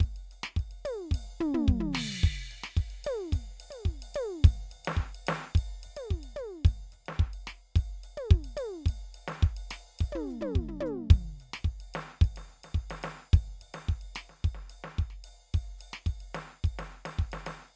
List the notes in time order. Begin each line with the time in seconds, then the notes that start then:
0.01 kick, ride
0.17 ride
0.32 hi-hat pedal, ride bell
0.44 snare
0.57 kick, hi-hat pedal, ride
0.72 ride
0.85 hi-hat pedal, high tom, ride
1.11 kick, hi-hat pedal, ride
1.41 floor tom, hi-hat pedal
1.54 floor tom
1.69 kick
1.80 floor tom
1.94 snare, hi-hat pedal, crash
2.23 kick, hi-hat pedal, ride
2.51 hi-hat pedal, ride
2.64 snare
2.77 kick, hi-hat pedal, ride
2.91 ride
3.05 hi-hat pedal, high tom, ride
3.33 kick, hi-hat pedal, ride
3.61 hi-hat pedal, ride
3.71 high tom, ride
3.86 kick, hi-hat pedal
4.03 ride
4.15 hi-hat pedal, high tom, ride
4.45 kick, ride
4.71 hi-hat pedal, ride
4.86 snare, ride
4.97 kick
5.15 ride
5.27 kick, snare, hi-hat pedal, ride
5.56 kick, ride
5.83 kick, hi-hat pedal, ride
5.97 high tom, ride
6.11 kick
6.24 ride
6.36 kick, hi-hat pedal, high tom, ride
6.66 kick, ride
6.93 kick, hi-hat pedal, ride
7.06 snare, ride
7.20 kick
7.34 ride
7.48 kick, snare, hi-hat pedal, ride
7.76 kick, ride
8.04 hi-hat pedal, ride
8.18 high tom, ride
8.31 kick
8.45 ride
8.57 hi-hat pedal, high tom, ride
8.86 kick, ride
9.15 hi-hat pedal, ride
9.28 snare, ride
9.43 kick
9.57 ride
9.71 snare, hi-hat pedal, ride
10.00 kick, ride
10.13 floor tom, high tom
10.31 hi-hat pedal
10.41 floor tom, high tom
10.56 kick
10.69 floor tom
10.81 floor tom, high tom
10.86 hi-hat pedal
11.11 kick, hi-hat pedal, ride
11.41 hi-hat pedal, ride
11.54 snare, ride
11.65 kick, hi-hat pedal
11.81 ride
11.95 snare, hi-hat pedal, ride
12.22 kick, ride
12.37 snare, ride
12.50 hi-hat pedal
12.64 snare, ride
12.75 kick, hi-hat pedal
12.91 snare, ride
13.04 snare, hi-hat pedal, ride
13.34 kick, ride
13.48 snare
13.61 kick, hi-hat pedal, ride
13.75 snare, ride
13.87 kick, hi-hat pedal
14.02 ride
14.16 snare, hi-hat pedal, ride
14.30 snare
14.45 kick, ride
14.55 snare
14.70 hi-hat pedal, ride
14.85 snare
14.99 kick, ride
15.11 snare
15.25 hi-hat pedal, ride
15.52 kick, hi-hat pedal, ride
15.65 snare
15.79 hi-hat pedal, ride
15.94 snare
16.07 kick, ride
16.21 ride
16.34 snare, hi-hat pedal, ride
16.50 snare
16.65 kick, ride
16.80 snare, ride
16.91 hi-hat pedal
17.06 snare, ride
17.19 kick
17.33 snare, ride
17.47 snare, hi-hat pedal, ride